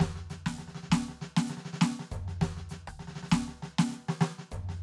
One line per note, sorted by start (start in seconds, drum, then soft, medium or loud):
0.01 kick soft
0.01 snare loud
0.11 kick soft
0.17 snare soft
0.31 snare medium
0.31 hi-hat pedal soft
0.47 kick soft
0.47 snare medium
0.59 snare soft
0.69 snare soft
0.76 snare medium
0.84 snare soft
0.91 kick soft
0.91 snare loud
0.91 hi-hat pedal medium
1.09 snare soft
1.22 snare medium
1.38 snare loud
1.47 snare medium
1.47 hi-hat pedal medium
1.58 snare soft
1.65 snare soft
1.65 snare medium
1.74 snare medium
1.82 snare loud
2.00 snare medium
2.12 kick medium
2.12 floor tom medium
2.12 hi-hat pedal medium
2.22 kick soft
2.29 snare soft
2.42 kick soft
2.42 snare loud
2.48 kick soft
2.58 snare soft
2.70 snare medium
2.70 hi-hat pedal medium
2.88 kick soft
2.88 cross-stick medium
3.00 snare soft
3.08 snare medium
3.14 snare soft
3.16 snare medium
3.24 snare medium
3.30 kick soft
3.30 snare loud
3.30 hi-hat pedal soft
3.49 snare soft
3.63 snare medium
3.79 snare loud
3.92 snare soft
3.92 hi-hat pedal soft
4.09 snare medium
4.22 snare loud
4.39 snare soft
4.52 kick soft
4.52 floor tom medium
4.52 hi-hat pedal medium
4.59 kick soft
4.62 kick soft
4.70 snare soft